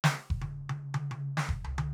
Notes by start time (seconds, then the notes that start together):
0.04 snare
0.30 kick
0.42 high tom
0.69 high tom
0.94 high tom
1.11 high tom
1.37 snare
1.49 kick
1.65 floor tom
1.78 high tom